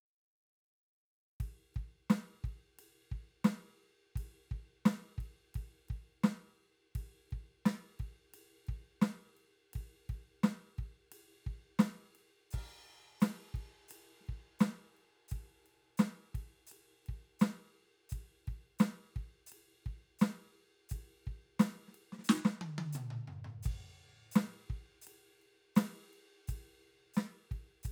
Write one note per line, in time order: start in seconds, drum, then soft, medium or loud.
1.40 kick soft
1.40 ride soft
1.75 kick soft
1.75 ride soft
2.10 snare loud
2.10 ride medium
2.44 kick soft
2.44 ride soft
2.79 ride medium
3.12 kick soft
3.12 ride soft
3.45 snare loud
3.45 ride medium
4.16 kick soft
4.16 ride soft
4.51 kick soft
4.86 snare loud
4.86 ride medium
5.18 kick soft
5.18 ride soft
5.55 kick soft
5.55 ride soft
5.89 kick soft
5.89 ride soft
6.24 snare loud
6.24 ride soft
6.95 kick soft
6.95 ride soft
7.31 kick soft
7.31 ride soft
7.66 snare loud
7.66 ride medium
8.00 kick soft
8.00 ride soft
8.34 ride medium
8.67 kick soft
8.67 ride soft
9.02 snare loud
9.02 ride soft
9.37 ride soft
9.74 kick soft
9.74 ride medium
10.10 kick soft
10.10 ride soft
10.44 snare loud
10.44 ride soft
10.79 kick soft
10.79 ride soft
11.12 ride medium
11.47 kick soft
11.47 ride soft
11.79 snare loud
11.79 ride medium
12.15 ride soft
12.51 kick soft
12.51 hi-hat pedal soft
12.51 crash soft
12.85 ride soft
13.21 snare loud
13.21 hi-hat pedal soft
13.21 ride medium
13.55 kick soft
13.55 ride soft
13.89 hi-hat pedal soft
13.89 ride medium
14.21 snare soft
14.27 kick soft
14.27 ride soft
14.60 snare loud
14.60 hi-hat pedal soft
14.60 ride soft
14.68 snare soft
14.97 ride soft
15.29 kick soft
15.29 hi-hat pedal soft
15.29 ride soft
15.66 ride soft
15.98 snare loud
15.98 hi-hat pedal medium
15.98 ride soft
16.35 kick soft
16.35 ride soft
16.67 hi-hat pedal medium
16.72 ride soft
17.07 kick soft
17.07 ride soft
17.40 snare loud
17.40 hi-hat pedal medium
17.40 ride medium
18.10 kick soft
18.10 hi-hat pedal medium
18.10 ride soft
18.48 kick soft
18.48 ride soft
18.79 snare loud
18.79 hi-hat pedal medium
18.79 ride medium
19.16 kick soft
19.16 ride soft
19.47 hi-hat pedal medium
19.52 ride medium
19.86 kick soft
19.86 ride soft
20.19 snare loud
20.19 hi-hat pedal soft
20.19 ride medium
20.89 kick soft
20.89 hi-hat pedal medium
20.89 ride medium
21.26 kick soft
21.26 ride soft
21.60 snare loud
21.60 hi-hat pedal medium
21.60 ride medium
21.88 snare soft
21.95 ride soft
22.13 snare soft
22.19 snare soft
22.24 snare soft
22.24 hi-hat pedal medium
22.30 snare loud
22.45 snare medium
22.61 high tom medium
22.78 high tom loud
22.93 hi-hat pedal medium
22.93 mid tom medium
23.11 mid tom medium
23.28 floor tom soft
23.45 floor tom soft
23.63 kick medium
23.63 hi-hat pedal medium
23.63 ride soft
24.32 hi-hat pedal medium
24.36 snare loud
24.36 ride medium
24.70 kick soft
24.70 ride soft
25.02 hi-hat pedal medium
25.07 ride medium
25.42 ride soft
25.76 snare loud
25.76 hi-hat pedal medium
25.76 ride medium
26.14 ride soft
26.48 kick soft
26.48 hi-hat pedal soft
26.48 ride medium
26.83 ride soft
27.14 snare medium
27.14 hi-hat pedal soft
27.18 ride soft
27.51 kick soft
27.51 ride soft
27.83 kick soft
27.83 hi-hat pedal medium
27.83 ride medium